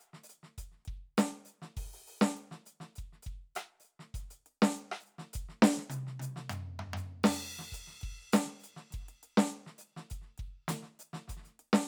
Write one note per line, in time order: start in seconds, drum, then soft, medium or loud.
0.01 closed hi-hat soft
0.14 snare soft
0.24 hi-hat pedal medium
0.30 closed hi-hat soft
0.44 snare soft
0.59 closed hi-hat medium
0.59 kick soft
0.72 snare soft
0.77 snare soft
0.81 snare soft
0.86 kick soft
0.86 closed hi-hat soft
0.97 kick soft
1.18 closed hi-hat medium
1.18 snare medium
1.31 snare soft
1.46 closed hi-hat soft
1.46 hi-hat pedal medium
1.63 snare soft
1.77 open hi-hat medium
1.77 kick medium
1.77 snare soft
1.87 kick soft
1.94 open hi-hat soft
2.08 open hi-hat medium
2.22 snare loud
2.37 closed hi-hat soft
2.52 snare soft
2.66 closed hi-hat soft
2.66 hi-hat pedal soft
2.81 snare soft
2.96 closed hi-hat soft
2.96 kick soft
3.13 snare soft
3.23 closed hi-hat soft
3.23 kick soft
3.33 kick soft
3.36 kick soft
3.56 closed hi-hat medium
3.56 cross-stick medium
3.81 hi-hat pedal soft
3.85 closed hi-hat soft
4.00 snare soft
4.15 closed hi-hat medium
4.15 kick soft
4.15 snare soft
4.21 kick soft
4.21 snare soft
4.24 kick soft
4.24 snare soft
4.28 closed hi-hat soft
4.28 snare soft
4.47 closed hi-hat soft
4.63 snare loud
4.77 closed hi-hat soft
4.92 cross-stick medium
5.01 hi-hat pedal soft
5.07 closed hi-hat soft
5.19 snare soft
5.34 closed hi-hat medium
5.34 kick medium
5.43 kick soft
5.46 kick soft
5.46 snare soft
5.63 snare loud
5.78 snare soft
5.90 hi-hat pedal medium
5.90 high tom loud
6.08 snare soft
6.20 hi-hat pedal medium
6.20 high tom medium
6.37 snare soft
6.50 hi-hat pedal medium
6.50 mid tom loud
6.80 mid tom medium
6.94 hi-hat pedal medium
6.94 mid tom medium
7.24 snare loud
7.24 crash loud
7.60 snare soft
7.73 closed hi-hat medium
7.73 kick soft
7.88 snare soft
7.91 snare soft
8.02 kick soft
8.02 closed hi-hat soft
8.13 kick soft
8.33 closed hi-hat loud
8.33 snare loud
8.46 snare soft
8.60 closed hi-hat medium
8.60 hi-hat pedal soft
8.77 snare soft
8.91 kick soft
8.91 snare soft
8.91 closed hi-hat medium
8.97 snare soft
9.00 kick soft
9.00 snare soft
9.04 snare soft
9.09 closed hi-hat soft
9.24 closed hi-hat medium
9.38 snare loud
9.53 closed hi-hat soft
9.67 snare soft
9.79 closed hi-hat soft
9.79 hi-hat pedal medium
9.97 snare soft
10.11 closed hi-hat soft
10.11 kick soft
10.22 snare soft
10.26 snare soft
10.38 kick soft
10.38 closed hi-hat soft
10.48 kick soft
10.69 closed hi-hat medium
10.69 snare medium
10.83 snare soft
11.00 hi-hat pedal medium
11.14 snare medium
11.28 closed hi-hat medium
11.28 kick soft
11.28 snare soft
11.37 kick soft
11.37 snare soft
11.42 open hi-hat soft
11.42 snare soft
11.46 snare soft
11.50 snare soft
11.60 closed hi-hat soft
11.74 snare loud